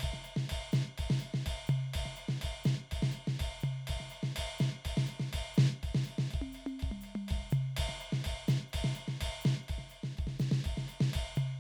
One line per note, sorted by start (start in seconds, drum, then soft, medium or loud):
0.01 kick soft
0.01 ride bell medium
0.10 kick soft
0.14 snare soft
0.25 hi-hat pedal medium
0.25 ride soft
0.37 snare medium
0.50 kick soft
0.50 ride bell loud
0.58 kick soft
0.73 snare loud
0.73 hi-hat pedal medium
0.98 kick soft
0.98 ride bell medium
1.06 kick soft
1.11 snare medium
1.20 hi-hat pedal medium
1.20 ride soft
1.35 snare medium
1.47 kick soft
1.47 ride bell medium
1.53 kick soft
1.67 floor tom loud
1.67 hi-hat pedal medium
1.94 kick soft
1.94 ride bell loud
2.02 kick soft
2.06 snare soft
2.16 hi-hat pedal medium
2.16 ride soft
2.29 snare medium
2.42 kick soft
2.42 ride bell medium
2.50 kick soft
2.64 snare loud
2.64 hi-hat pedal medium
2.92 kick soft
2.92 ride bell medium
2.99 kick soft
3.03 snare medium
3.12 hi-hat pedal medium
3.12 ride soft
3.28 snare medium
3.40 kick soft
3.40 ride bell medium
3.48 kick soft
3.61 floor tom loud
3.61 hi-hat pedal medium
3.88 kick soft
3.88 ride bell medium
3.96 kick soft
4.01 snare soft
4.10 hi-hat pedal medium
4.10 ride soft
4.24 snare medium
4.37 kick soft
4.37 ride bell loud
4.59 snare medium
4.59 hi-hat pedal medium
4.86 kick soft
4.86 ride bell medium
4.92 kick soft
4.98 snare medium
5.07 hi-hat pedal medium
5.07 ride soft
5.20 snare medium
5.34 kick soft
5.34 ride bell loud
5.41 kick soft
5.55 snare loud
5.55 hi-hat pedal medium
5.65 snare soft
5.84 kick soft
5.84 ride bell medium
5.90 kick soft
5.95 snare medium
6.05 hi-hat pedal medium
6.05 ride medium
6.19 snare medium
6.31 kick soft
6.31 ride bell medium
6.41 kick soft
6.41 high tom medium
6.53 hi-hat pedal medium
6.53 ride bell soft
6.67 closed hi-hat soft
6.67 high tom medium
6.80 kick soft
6.80 ride bell medium
6.89 kick soft
6.89 mid tom medium
7.02 hi-hat pedal medium
7.02 ride bell soft
7.16 mid tom medium
7.29 kick soft
7.29 ride medium
7.38 kick soft
7.51 hi-hat pedal medium
7.51 floor tom loud
7.77 kick soft
7.77 ride bell loud
7.86 kick soft
7.86 snare soft
8.01 hi-hat pedal medium
8.01 ride soft
8.13 snare medium
8.25 kick soft
8.25 ride bell medium
8.33 kick soft
8.48 snare loud
8.48 hi-hat pedal medium
8.69 hi-hat pedal soft
8.74 kick soft
8.74 ride loud
8.81 kick soft
8.81 snare medium
8.95 hi-hat pedal medium
8.95 ride soft
9.09 snare medium
9.21 kick soft
9.21 ride loud
9.28 kick soft
9.42 hi-hat pedal medium
9.46 snare loud
9.63 hi-hat pedal soft
9.69 kick soft
9.69 ride bell medium
9.76 kick soft
9.76 snare soft
9.90 hi-hat pedal medium
9.90 ride soft
10.04 snare medium
10.18 kick soft
10.18 ride bell soft
10.26 kick soft
10.26 snare medium
10.40 snare medium
10.40 hi-hat pedal medium
10.52 snare medium
10.65 kick soft
10.65 ride medium
10.73 kick soft
10.78 snare medium
10.89 hi-hat pedal medium
10.89 ride medium
11.01 snare loud
11.14 kick soft
11.14 ride loud
11.22 kick soft
11.36 hi-hat pedal medium
11.36 floor tom loud